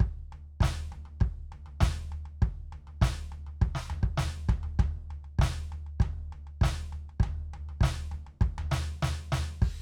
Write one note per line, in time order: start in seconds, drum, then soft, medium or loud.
0.01 kick loud
0.01 floor tom medium
0.33 floor tom medium
0.61 kick loud
0.61 snare loud
0.61 floor tom loud
0.93 floor tom medium
1.06 floor tom medium
1.21 kick loud
1.21 floor tom medium
1.53 floor tom medium
1.67 floor tom medium
1.81 kick loud
1.81 snare loud
1.81 floor tom loud
2.13 floor tom medium
2.26 floor tom medium
2.43 kick loud
2.43 floor tom medium
2.73 floor tom medium
2.88 floor tom medium
3.02 kick loud
3.02 snare loud
3.02 floor tom loud
3.33 floor tom medium
3.47 floor tom medium
3.62 kick loud
3.62 floor tom medium
3.76 snare loud
3.91 floor tom loud
4.04 kick loud
4.18 snare loud
4.18 floor tom loud
4.50 kick loud
4.50 floor tom loud
4.64 floor tom medium
4.80 kick loud
4.80 floor tom loud
5.11 floor tom medium
5.25 floor tom soft
5.40 kick loud
5.40 snare loud
5.40 floor tom loud
5.73 floor tom medium
5.87 floor tom soft
6.01 kick loud
6.01 floor tom loud
6.33 floor tom medium
6.48 floor tom soft
6.62 kick loud
6.62 snare loud
6.62 floor tom loud
6.93 floor tom medium
7.10 floor tom soft
7.21 kick loud
7.21 floor tom loud
7.54 floor tom medium
7.70 floor tom medium
7.82 kick loud
7.82 snare loud
7.82 floor tom loud
8.12 floor tom medium
8.27 floor tom medium
8.42 kick loud
8.42 floor tom loud
8.59 floor tom loud
8.72 snare loud
8.72 floor tom loud
9.03 snare loud
9.03 floor tom loud
9.33 snare loud
9.33 floor tom loud
9.63 kick loud
9.63 crash medium